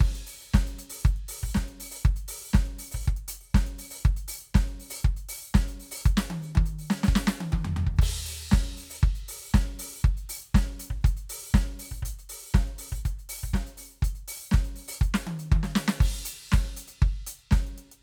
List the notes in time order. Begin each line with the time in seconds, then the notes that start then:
0.01 kick, crash
0.15 closed hi-hat
0.27 open hi-hat
0.41 open hi-hat
0.51 kick, snare, hi-hat pedal
0.67 closed hi-hat
0.79 closed hi-hat
0.90 open hi-hat
1.02 kick, hi-hat pedal
1.06 closed hi-hat
1.16 closed hi-hat
1.29 open hi-hat
1.41 kick, open hi-hat
1.55 kick, snare, hi-hat pedal
1.69 closed hi-hat
1.80 open hi-hat
1.92 open hi-hat
2.00 hi-hat pedal
2.05 kick, closed hi-hat
2.16 closed hi-hat
2.28 open hi-hat
2.42 open hi-hat
2.52 kick, snare, hi-hat pedal
2.66 closed hi-hat
2.79 open hi-hat
2.91 open hi-hat, kick
3.05 kick, hi-hat pedal, open hi-hat
3.17 closed hi-hat
3.28 open hi-hat
3.41 open hi-hat
3.53 kick, snare, hi-hat pedal
3.67 closed hi-hat
3.79 open hi-hat
3.91 open hi-hat
4.00 hi-hat pedal
4.05 kick, closed hi-hat
4.17 closed hi-hat
4.28 open hi-hat
4.41 open hi-hat
4.50 hi-hat pedal
4.55 kick, snare
4.69 closed hi-hat
4.80 open hi-hat
4.90 open hi-hat
4.99 hi-hat pedal
5.05 kick, closed hi-hat
5.17 closed hi-hat
5.29 open hi-hat
5.42 open hi-hat
5.50 hi-hat pedal
5.54 kick, snare
5.68 closed hi-hat
5.76 kick
5.80 open hi-hat
5.92 open hi-hat
6.01 hi-hat pedal
6.06 closed hi-hat, kick
6.17 snare
6.30 high tom
6.42 open hi-hat
6.52 hi-hat pedal, high tom
6.58 kick
6.66 closed hi-hat
6.79 open hi-hat
6.90 snare
7.03 snare, hi-hat pedal
7.09 kick
7.16 snare
7.27 snare
7.41 high tom
7.50 kick, hi-hat pedal, high tom
7.65 floor tom
7.77 floor tom
7.87 kick
7.96 kick, hi-hat pedal
8.02 crash
8.26 open hi-hat
8.41 open hi-hat
8.49 snare, hi-hat pedal
8.54 kick
8.63 closed hi-hat
8.77 open hi-hat
8.90 open hi-hat
8.97 hi-hat pedal
9.03 kick, closed hi-hat
9.15 closed hi-hat
9.29 open hi-hat
9.42 open hi-hat
9.50 snare, hi-hat pedal
9.54 kick
9.68 closed hi-hat
9.79 open hi-hat
9.93 open hi-hat
10.01 kick, hi-hat pedal
10.06 closed hi-hat
10.17 closed hi-hat
10.29 open hi-hat
10.42 open hi-hat
10.51 kick, hi-hat pedal
10.55 snare
10.67 closed hi-hat
10.80 open hi-hat
10.91 kick, open hi-hat
11.02 kick, hi-hat pedal
11.06 closed hi-hat
11.17 closed hi-hat
11.30 open hi-hat
11.43 open hi-hat
11.50 kick, hi-hat pedal
11.54 snare
11.68 closed hi-hat
11.79 open hi-hat
11.91 kick, open hi-hat
11.98 hi-hat pedal
12.03 closed hi-hat, kick
12.19 open hi-hat
12.29 open hi-hat
12.41 open hi-hat
12.51 snare, hi-hat pedal
12.55 kick
12.68 closed hi-hat
12.79 open hi-hat
12.92 kick, open hi-hat
12.97 hi-hat pedal
13.05 closed hi-hat, kick
13.19 open hi-hat
13.29 open hi-hat
13.44 kick
13.51 snare, hi-hat pedal
13.67 closed hi-hat
13.78 open hi-hat
13.89 open hi-hat
14.02 closed hi-hat, kick, hi-hat pedal
14.15 closed hi-hat
14.28 open hi-hat
14.40 open hi-hat
14.49 snare, hi-hat pedal
14.54 kick
14.65 closed hi-hat
14.76 open hi-hat
14.88 open hi-hat
14.95 hi-hat pedal
15.01 closed hi-hat, kick
15.14 snare
15.27 high tom
15.39 open hi-hat
15.45 hi-hat pedal
15.52 kick, high tom
15.63 snare
15.76 snare
15.88 snare
16.01 kick, crash
16.14 closed hi-hat
16.25 closed hi-hat
16.38 open hi-hat
16.48 hi-hat pedal
16.52 kick, snare
16.64 closed hi-hat
16.77 closed hi-hat
16.88 closed hi-hat
17.02 closed hi-hat, kick
17.13 closed hi-hat
17.27 closed hi-hat
17.39 closed hi-hat
17.51 kick, snare
17.67 closed hi-hat
17.78 closed hi-hat
17.92 closed hi-hat